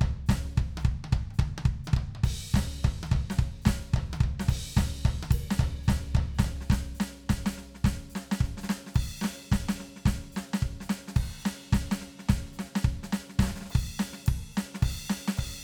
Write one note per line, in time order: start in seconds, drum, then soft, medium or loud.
0.01 kick loud
0.01 floor tom loud
0.26 kick loud
0.26 snare loud
0.26 hi-hat pedal soft
0.32 floor tom loud
0.58 kick loud
0.58 floor tom medium
0.77 hi-hat pedal soft
0.77 high tom loud
0.85 kick loud
0.85 mid tom medium
1.04 high tom loud
1.13 kick loud
1.13 mid tom loud
1.31 hi-hat pedal soft
1.31 high tom medium
1.39 kick loud
1.39 high tom loud
1.58 high tom loud
1.65 kick loud
1.84 hi-hat pedal soft
1.84 high tom loud
1.93 kick loud
1.93 mid tom loud
2.15 mid tom medium
2.24 kick loud
2.24 ride loud
2.52 kick loud
2.52 snare loud
2.52 hi-hat pedal soft
2.57 floor tom loud
2.84 kick loud
2.84 floor tom loud
3.03 hi-hat pedal soft
3.03 high tom loud
3.12 kick loud
3.12 floor tom loud
3.30 snare loud
3.39 kick loud
3.39 mid tom medium
3.62 snare loud
3.62 hi-hat pedal soft
3.67 kick loud
3.67 snare loud
3.94 kick loud
3.94 floor tom loud
4.13 hi-hat pedal soft
4.13 high tom loud
4.21 kick loud
4.21 floor tom medium
4.40 snare loud
4.48 kick loud
4.48 ride loud
4.72 hi-hat pedal soft
4.77 kick loud
4.77 snare loud
4.77 floor tom loud
5.05 kick loud
5.05 floor tom loud
5.22 hi-hat pedal soft
5.22 high tom loud
5.31 kick loud
5.31 ride loud
5.51 snare loud
5.59 kick loud
5.59 floor tom loud
5.83 hi-hat pedal soft
5.88 kick loud
5.88 snare loud
5.88 floor tom loud
6.15 kick loud
6.15 floor tom loud
6.35 hi-hat pedal soft
6.39 kick loud
6.39 snare loud
6.45 floor tom loud
6.61 snare medium
6.70 kick loud
6.70 snare loud
6.95 hi-hat pedal medium
7.00 snare loud
7.29 kick loud
7.29 snare loud
7.46 snare loud
7.51 hi-hat pedal medium
7.58 snare medium
7.75 snare soft
7.84 kick loud
7.84 snare loud
8.04 snare soft
8.10 hi-hat pedal medium
8.15 snare loud
8.32 snare loud
8.41 kick loud
8.41 snare soft
8.57 snare medium
8.57 hi-hat pedal medium
8.63 snare medium
8.69 snare loud
8.87 snare medium
8.95 kick loud
8.95 crash loud
9.17 snare loud
9.17 hi-hat pedal medium
9.24 snare loud
9.52 kick loud
9.52 snare loud
9.69 snare loud
9.69 hi-hat pedal medium
9.80 snare medium
9.96 snare soft
10.06 kick loud
10.06 snare loud
10.23 snare soft
10.32 hi-hat pedal medium
10.36 snare loud
10.54 snare loud
10.62 kick loud
10.81 snare medium
10.81 hi-hat pedal medium
10.90 snare loud
11.08 snare medium
11.16 kick loud
11.16 crash medium
11.39 hi-hat pedal medium
11.45 snare loud
11.73 kick loud
11.73 snare loud
11.91 snare loud
11.91 hi-hat pedal medium
12.01 snare medium
12.19 snare medium
12.29 kick loud
12.29 snare loud
12.46 snare soft
12.53 hi-hat pedal medium
12.59 snare loud
12.76 snare loud
12.84 kick loud
12.88 snare soft
13.03 snare medium
13.03 hi-hat pedal medium
13.13 snare loud
13.29 snare soft
13.39 kick loud
13.39 snare loud
13.46 snare medium
13.56 snare medium
13.56 hi-hat pedal medium
13.61 snare medium
13.65 snare medium
13.70 crash loud
13.75 kick loud
13.99 snare loud
13.99 hi-hat pedal medium
14.13 snare medium
14.25 kick loud
14.25 snare soft
14.25 crash medium
14.52 hi-hat pedal soft
14.57 snare loud
14.75 snare medium
14.82 kick loud
14.82 crash loud
15.04 hi-hat pedal soft
15.10 snare loud
15.28 snare loud
15.37 kick medium
15.37 crash loud